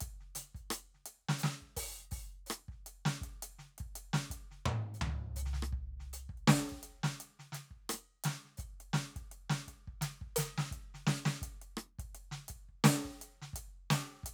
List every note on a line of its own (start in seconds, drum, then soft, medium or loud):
0.01 kick medium
0.01 closed hi-hat medium
0.20 snare soft
0.35 closed hi-hat medium
0.35 snare soft
0.55 closed hi-hat soft
0.55 kick soft
0.71 closed hi-hat medium
0.71 cross-stick medium
0.94 snare soft
1.06 closed hi-hat medium
1.29 snare medium
1.39 hi-hat pedal medium
1.43 snare medium
1.62 kick soft
1.77 open hi-hat loud
1.77 kick soft
1.99 snare soft
2.11 open hi-hat medium
2.11 kick medium
2.46 cross-stick medium
2.46 hi-hat pedal medium
2.51 closed hi-hat medium
2.68 kick soft
2.68 snare soft
2.86 closed hi-hat medium
3.05 snare medium
3.22 kick medium
3.22 closed hi-hat soft
3.43 closed hi-hat medium
3.59 snare soft
3.78 kick medium
3.78 closed hi-hat soft
3.96 closed hi-hat medium
4.13 snare medium
4.30 kick medium
4.30 closed hi-hat medium
4.51 snare soft
4.66 high tom loud
4.94 hi-hat pedal soft
5.01 floor tom loud
5.36 hi-hat pedal medium
5.46 snare soft
5.53 snare soft
5.62 cross-stick medium
5.73 kick medium
6.00 snare soft
6.13 closed hi-hat medium
6.29 kick medium
6.37 closed hi-hat soft
6.48 snare loud
6.69 kick soft
6.69 closed hi-hat soft
6.83 closed hi-hat medium
7.03 snare medium
7.20 closed hi-hat medium
7.39 snare soft
7.52 snare medium
7.52 closed hi-hat medium
7.71 kick soft
7.89 open hi-hat loud
7.89 cross-stick medium
7.94 cross-stick soft
8.24 snare medium
8.24 open hi-hat medium
8.30 snare soft
8.45 snare soft
8.57 kick medium
8.57 closed hi-hat soft
8.57 hi-hat pedal soft
8.80 closed hi-hat soft
8.93 snare medium
9.16 kick soft
9.16 closed hi-hat soft
9.32 closed hi-hat soft
9.50 snare medium
9.68 kick soft
9.68 closed hi-hat soft
9.88 kick soft
10.01 snare medium
10.01 closed hi-hat medium
10.21 kick soft
10.36 closed hi-hat loud
10.36 snare medium
10.58 snare medium
10.71 kick medium
10.71 closed hi-hat soft
10.94 snare soft
11.07 snare loud
11.25 snare medium
11.42 kick medium
11.42 open hi-hat medium
11.62 open hi-hat soft
11.77 cross-stick medium
11.99 kick medium
11.99 closed hi-hat soft
12.15 closed hi-hat soft
12.32 snare medium
12.48 kick soft
12.48 closed hi-hat medium
12.69 kick soft
12.84 open hi-hat loud
12.84 snare loud
13.05 kick soft
13.22 open hi-hat medium
13.42 snare soft
13.53 kick soft
13.53 open hi-hat medium
13.90 open hi-hat medium
13.90 snare medium
14.24 kick soft
14.24 open hi-hat medium